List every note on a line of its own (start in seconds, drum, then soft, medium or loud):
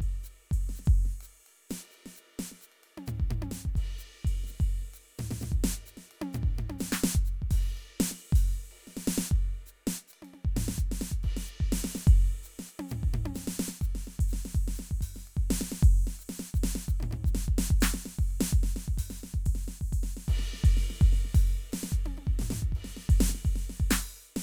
0.01 kick medium
0.01 crash medium
0.01 ride soft
0.23 hi-hat pedal medium
0.28 ride soft
0.51 kick medium
0.51 crash medium
0.69 snare soft
0.75 hi-hat pedal medium
0.79 snare soft
0.86 kick loud
0.86 crash medium
0.96 hi-hat pedal soft
1.05 snare soft
1.21 hi-hat pedal medium
1.21 ride medium
1.44 hi-hat pedal soft
1.44 ride medium
1.70 snare medium
1.70 hi-hat pedal medium
1.70 ride soft
1.85 ride medium
1.90 hi-hat pedal soft
1.95 ride medium
2.06 snare soft
2.15 hi-hat pedal medium
2.15 ride soft
2.39 snare medium
2.39 ride medium
2.52 snare soft
2.61 hi-hat pedal medium
2.61 ride medium
2.72 ride soft
2.84 ride medium
2.98 high tom medium
3.06 floor tom medium
3.06 hi-hat pedal medium
3.20 kick medium
3.31 floor tom loud
3.42 high tom medium
3.51 snare medium
3.51 hi-hat pedal medium
3.65 kick medium
3.73 kick medium
3.73 hi-hat pedal soft
3.77 crash medium
3.77 ride medium
3.98 hi-hat pedal medium
4.03 ride bell soft
4.25 kick medium
4.25 crash medium
4.44 snare soft
4.44 hi-hat pedal medium
4.50 snare soft
4.60 kick medium
4.60 crash medium
4.82 snare soft
4.93 hi-hat pedal medium
4.93 ride medium
5.15 snare medium
5.15 hi-hat pedal soft
5.19 floor tom medium
5.31 snare medium
5.31 floor tom medium
5.40 snare soft
5.40 floor tom medium
5.40 hi-hat pedal medium
5.52 kick medium
5.62 snare loud
5.62 hi-hat pedal soft
5.62 ride soft
5.86 hi-hat pedal medium
5.86 ride medium
5.97 snare soft
6.11 ride medium
6.22 high tom loud
6.33 floor tom medium
6.33 hi-hat pedal medium
6.43 kick medium
6.54 hi-hat pedal soft
6.59 floor tom medium
6.70 high tom medium
6.79 snare medium
6.79 hi-hat pedal medium
6.92 snare loud
7.04 snare loud
7.15 kick medium
7.25 hi-hat pedal medium
7.25 ride soft
7.42 kick medium
7.51 open hi-hat medium
7.51 kick medium
7.51 ride medium
7.77 ride medium
8.00 snare loud
8.00 crash medium
8.11 snare soft
8.25 ride soft
8.33 open hi-hat medium
8.33 kick loud
8.49 ride soft
8.71 ride soft
8.87 snare soft
8.97 snare medium
9.08 snare loud
9.12 hi-hat pedal soft
9.18 snare loud
9.31 kick medium
9.66 hi-hat pedal medium
9.87 snare loud
9.87 ride medium
10.08 hi-hat pedal medium
10.13 ride bell soft
10.22 high tom medium
10.22 ride medium
10.34 high tom soft
10.34 ride soft
10.45 kick medium
10.57 snare medium
10.57 floor tom medium
10.68 snare medium
10.77 kick medium
10.77 hi-hat pedal medium
10.92 snare medium
10.92 ride medium
11.01 snare medium
11.12 kick medium
11.21 kick medium
11.21 hi-hat pedal soft
11.21 ride medium
11.37 snare medium
11.46 hi-hat pedal medium
11.46 ride soft
11.60 kick medium
11.72 snare loud
11.72 ride loud
11.84 snare medium
11.95 snare medium
11.95 hi-hat pedal medium
12.07 kick loud
12.07 crash medium
12.43 hi-hat pedal medium
12.43 ride medium
12.59 snare medium
12.64 hi-hat pedal soft
12.69 ride medium
12.79 high tom loud
12.88 floor tom medium
12.88 hi-hat pedal medium
13.04 kick medium
13.14 floor tom loud
13.26 high tom loud
13.34 snare medium
13.34 hi-hat pedal medium
13.48 snare medium
13.59 snare medium
13.68 snare medium
13.81 kick medium
13.81 hi-hat pedal medium
13.81 ride medium
13.95 snare soft
14.04 snare soft
14.04 hi-hat pedal soft
14.19 kick medium
14.19 crash medium
14.28 hi-hat pedal medium
14.33 snare medium
14.45 snare medium
14.45 hi-hat pedal soft
14.55 kick medium
14.55 crash medium
14.68 snare medium
14.75 hi-hat pedal medium
14.79 snare soft
14.91 kick medium
15.01 open hi-hat medium
15.01 kick medium
15.16 snare soft
15.27 ride medium
15.37 kick medium
15.51 snare loud
15.51 crash medium
15.61 snare medium
15.72 snare medium
15.83 kick loud
15.83 crash loud
16.07 snare soft
16.19 hi-hat pedal medium
16.19 ride medium
16.29 snare medium
16.29 ride soft
16.39 snare medium
16.39 ride soft
16.54 kick medium
16.54 hi-hat pedal medium
16.64 snare medium
16.64 ride soft
16.75 snare medium
16.87 kick medium
16.87 hi-hat pedal medium
16.87 ride medium
17.00 floor tom medium
17.00 high tom medium
17.11 floor tom medium
17.11 high tom medium
17.25 kick medium
17.25 hi-hat pedal medium
17.35 snare medium
17.35 ride medium
17.48 kick medium
17.58 snare loud
17.58 crash medium
17.71 kick medium
17.81 snare loud
17.81 crash medium
17.94 snare medium
18.06 snare medium
18.19 kick medium
18.19 ride medium
18.31 ride soft
18.41 snare loud
18.53 kick medium
18.53 crash medium
18.63 snare medium
18.76 snare medium
18.88 kick medium
18.98 open hi-hat medium
18.98 kick medium
19.10 snare soft
19.24 snare soft
19.34 kick medium
19.46 kick medium
19.46 crash medium
19.55 snare soft
19.68 kick soft
19.68 snare soft
19.81 kick medium
19.93 kick medium
19.93 crash medium
20.03 snare soft
20.17 snare soft
20.28 kick medium
20.28 ride medium
20.39 snare soft
20.54 snare soft
20.64 kick loud
20.64 crash medium
20.77 snare soft
20.90 snare soft
21.01 kick loud
21.01 crash medium
21.13 snare soft
21.25 snare soft
21.35 open hi-hat medium
21.35 kick loud
21.50 snare soft
21.73 snare medium
21.73 ride medium
21.83 snare medium
21.83 ride medium
21.92 kick medium
22.06 high tom medium
22.06 ride medium
22.17 high tom medium
22.17 ride soft
22.27 kick medium
22.39 snare medium
22.39 floor tom medium
22.50 snare medium
22.50 floor tom medium
22.63 kick medium
22.72 kick medium
22.72 ride medium
22.84 snare soft
22.97 snare soft
23.09 kick loud
23.09 crash medium
23.21 snare loud
23.30 snare soft
23.35 snare soft
23.45 kick medium
23.45 crash medium
23.56 snare soft
23.70 snare soft
23.80 kick medium
23.91 open hi-hat loud
23.91 snare loud
24.17 ride medium
24.36 snare medium